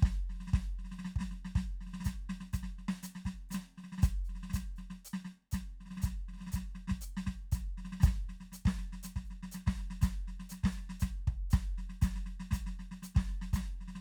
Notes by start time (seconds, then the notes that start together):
0.01 kick, snare
0.05 snare
0.29 snare
0.34 snare
0.40 snare
0.47 snare
0.53 kick, snare
0.79 snare
0.84 snare
0.91 snare
0.99 snare
1.05 snare
1.16 kick, snare
1.20 snare
1.31 snare
1.45 snare
1.55 kick, snare
1.81 snare
1.86 snare
1.93 snare
2.00 snare
2.04 kick, snare, hi-hat pedal
2.06 snare
2.29 snare
2.40 snare
2.53 kick, snare, hi-hat pedal
2.63 snare
2.78 snare
3.03 snare, hi-hat pedal
3.15 snare
3.24 kick, snare, hi-hat pedal
3.49 snare, hi-hat pedal, open hi-hat
3.54 snare
3.77 snare
3.84 snare
3.92 snare
3.98 snare
4.01 kick, snare, hi-hat pedal
4.04 snare
4.25 hi-hat pedal
4.29 snare
4.35 snare
4.43 snare
4.50 snare, hi-hat pedal
4.54 kick, snare
4.76 snare, hi-hat pedal
4.90 snare
5.05 hi-hat pedal
5.13 snare
5.25 snare
5.51 kick, snare, hi-hat pedal
5.80 snare
5.86 snare
5.97 snare
6.00 kick, snare, hi-hat pedal
6.05 snare
6.28 snare
6.33 snare
6.37 snare
6.41 snare
6.47 snare
6.51 kick, snare, hi-hat pedal
6.56 snare
6.75 snare
6.88 snare
6.89 kick, snare
7.01 hi-hat pedal
7.17 snare
7.26 kick, snare
7.52 kick, snare, hi-hat pedal
7.77 snare
7.85 snare
7.92 snare
8.00 kick, snare, hi-hat pedal
8.06 snare
8.29 snare
8.40 snare
8.52 snare, hi-hat pedal
8.65 kick, snare
8.67 snare
8.78 snare
8.93 snare
9.03 snare, hi-hat pedal
9.16 kick, snare
9.25 hi-hat pedal
9.30 snare
9.43 snare
9.51 snare, hi-hat pedal
9.66 kick, snare
9.74 hi-hat pedal
9.78 snare
9.90 snare
10.01 kick, snare, hi-hat pedal
10.03 snare
10.28 snare
10.39 snare
10.49 snare, hi-hat pedal
10.63 kick, snare
10.65 snare
10.71 hi-hat pedal
10.77 snare
10.89 snare
11.00 kick, snare, hi-hat pedal
11.27 kick, snare
11.50 kick, snare, hi-hat pedal
11.78 snare
11.89 snare
12.01 kick, snare, hi-hat pedal
12.04 snare
12.16 snare
12.26 snare
12.40 snare
12.51 kick, snare, hi-hat pedal
12.53 snare
12.66 snare
12.79 snare
12.91 snare
13.02 snare, hi-hat pedal
13.15 kick, snare
13.17 snare
13.29 snare
13.41 snare
13.53 kick, snare, hi-hat pedal
13.56 snare
13.81 snare
13.88 snare
13.95 snare